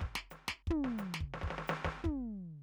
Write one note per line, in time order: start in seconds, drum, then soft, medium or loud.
0.01 kick soft
0.01 snare soft
0.16 snare medium
0.30 snare soft
0.30 hi-hat pedal medium
0.48 kick soft
0.48 snare loud
0.67 kick soft
0.67 floor tom medium
0.85 snare soft
0.98 snare soft
0.98 hi-hat pedal medium
1.14 snare medium
1.21 kick soft
1.34 snare soft
1.42 kick soft
1.42 snare soft
1.48 snare soft
1.51 snare medium
1.58 snare soft
1.68 snare medium
1.68 hi-hat pedal medium
1.85 kick soft
1.85 snare medium
2.04 kick soft
2.04 floor tom medium